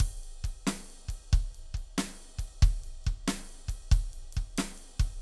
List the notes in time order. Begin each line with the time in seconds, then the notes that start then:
0.00 kick, ride
0.23 ride
0.44 kick, ride
0.67 snare, ride
0.90 ride
1.08 kick, ride
1.33 kick, ride
1.54 ride
1.74 kick, ride
1.98 snare, ride
2.38 kick, ride
2.62 kick, ride
2.83 ride
3.04 kick, ride
3.27 snare, ride
3.49 ride
3.68 kick, ride
3.91 kick, ride
4.13 ride
4.32 kick, ride
4.58 snare, ride
4.78 ride
4.99 kick, ride